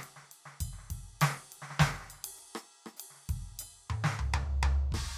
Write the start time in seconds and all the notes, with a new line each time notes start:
0.01 hi-hat pedal, ride
0.17 snare
0.23 snare
0.32 ride
0.46 snare
0.56 snare
0.61 kick, hi-hat pedal, ride bell
0.70 kick, snare
0.79 snare
0.83 snare
0.87 kick, snare, hi-hat pedal, ride
1.20 snare, hi-hat pedal, ride
1.50 hi-hat pedal, ride
1.62 snare
1.71 snare
1.80 kick, snare, hi-hat pedal
1.94 snare
2.01 snare
2.06 snare
2.10 snare, ride bell
2.19 snare
2.25 ride
2.37 hi-hat pedal
2.55 cross-stick
2.64 hi-hat pedal
2.86 cross-stick
2.97 hi-hat pedal, ride
3.11 snare
3.15 snare
3.25 hi-hat pedal
3.29 kick, ride
3.36 kick
3.40 kick
3.59 hi-hat pedal, ride bell
3.90 mid tom
4.04 snare
4.19 floor tom
4.34 floor tom
4.63 floor tom
4.92 kick, cross-stick, crash
4.99 kick, cross-stick
5.03 kick